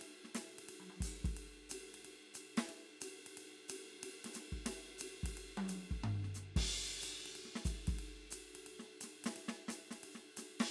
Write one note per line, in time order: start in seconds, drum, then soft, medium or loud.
0.01 ride medium
0.24 snare soft
0.34 snare medium
0.34 hi-hat pedal loud
0.34 ride medium
0.58 ride medium
0.69 ride medium
0.80 high tom soft
0.90 high tom soft
1.00 kick soft
1.00 hi-hat pedal medium
1.00 ride medium
1.24 kick soft
1.24 ride medium
1.36 ride medium
1.69 hi-hat pedal loud
1.69 ride medium
1.88 hi-hat pedal soft
1.94 ride medium
2.04 ride medium
2.34 hi-hat pedal medium
2.34 ride medium
2.57 snare medium
2.57 ride medium
2.69 ride medium
3.00 hi-hat pedal medium
3.00 ride medium
3.26 ride medium
3.37 ride medium
3.68 hi-hat pedal medium
3.68 ride loud
4.03 ride medium
4.24 snare soft
4.24 ride medium
4.33 snare soft
4.33 hi-hat pedal medium
4.33 ride medium
4.52 kick soft
4.66 snare medium
4.66 ride loud
4.98 hi-hat pedal loud
4.98 ride medium
5.23 kick soft
5.23 ride medium
5.37 ride medium
5.57 high tom medium
5.68 hi-hat pedal medium
5.68 ride medium
5.91 kick soft
6.03 floor tom loud
6.24 snare soft
6.34 snare soft
6.34 hi-hat pedal medium
6.56 kick medium
6.56 ride loud
6.94 snare soft
7.01 hi-hat pedal medium
7.01 ride medium
7.19 hi-hat pedal soft
7.26 ride medium
7.35 ride medium
7.45 snare soft
7.55 snare medium
7.64 kick soft
7.64 hi-hat pedal medium
7.64 ride medium
7.87 kick medium
7.87 ride medium
7.98 ride medium
8.30 hi-hat pedal loud
8.30 ride medium
8.55 ride medium
8.66 ride medium
8.79 snare soft
9.00 snare soft
9.00 hi-hat pedal loud
9.00 ride medium
9.24 snare medium
9.24 ride medium
9.36 ride medium
9.48 snare medium
9.68 snare medium
9.68 hi-hat pedal medium
9.68 ride medium
9.90 snare soft
9.90 hi-hat pedal soft
9.90 ride medium
10.03 ride medium
10.12 snare soft
10.12 hi-hat pedal soft
10.36 snare soft
10.36 hi-hat pedal medium
10.36 ride medium
10.60 snare medium
10.60 ride medium